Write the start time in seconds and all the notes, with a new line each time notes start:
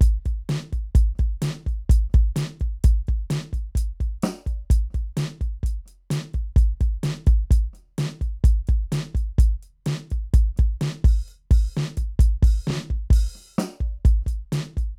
0.01 closed hi-hat, kick
0.26 kick, closed hi-hat
0.49 closed hi-hat, snare
0.73 kick, closed hi-hat
0.95 closed hi-hat, kick
1.15 snare, closed hi-hat
1.19 kick
1.42 closed hi-hat, snare
1.50 snare
1.58 snare
1.67 kick, closed hi-hat
1.90 closed hi-hat, kick
2.10 snare
2.14 kick, closed hi-hat
2.36 closed hi-hat, snare
2.60 kick, closed hi-hat
2.84 closed hi-hat, kick
3.07 kick, closed hi-hat
3.30 closed hi-hat, snare
3.53 kick, closed hi-hat
3.75 closed hi-hat, kick
4.00 kick, closed hi-hat
4.23 closed hi-hat, snare
4.47 kick, closed hi-hat
4.70 closed hi-hat, kick
4.91 kick, snare, closed hi-hat
5.17 closed hi-hat, snare
5.41 kick, closed hi-hat
5.63 closed hi-hat, kick
5.86 snare, closed hi-hat
6.11 closed hi-hat, snare
6.34 kick, closed hi-hat
6.56 closed hi-hat, kick
6.81 kick, closed hi-hat
7.04 closed hi-hat, snare
7.27 closed hi-hat, kick
7.51 closed hi-hat, kick
7.74 snare, closed hi-hat
7.98 closed hi-hat, snare
8.06 snare
8.21 kick, closed hi-hat
8.44 closed hi-hat, kick
8.67 kick, closed hi-hat
8.92 closed hi-hat, snare
9.15 kick, closed hi-hat
9.39 closed hi-hat, kick
9.63 closed hi-hat
9.86 closed hi-hat, snare
10.11 kick, closed hi-hat
10.34 closed hi-hat, kick
10.57 kick, snare, closed hi-hat
10.81 snare, closed hi-hat
11.04 open hi-hat, kick
11.28 hi-hat pedal, open hi-hat
11.51 open hi-hat, kick
11.73 snare, hi-hat pedal
11.78 closed hi-hat
11.97 closed hi-hat, kick
12.19 closed hi-hat, kick
12.43 open hi-hat, kick, snare
12.67 snare, hi-hat pedal
12.70 snare
12.90 kick
13.11 open hi-hat, kick
13.35 snare, open hi-hat
13.56 snare, hi-hat pedal
13.60 closed hi-hat
13.81 kick, closed hi-hat
14.05 closed hi-hat, kick
14.22 snare
14.27 kick, closed hi-hat
14.52 closed hi-hat, snare
14.66 snare
14.68 snare
14.77 kick, closed hi-hat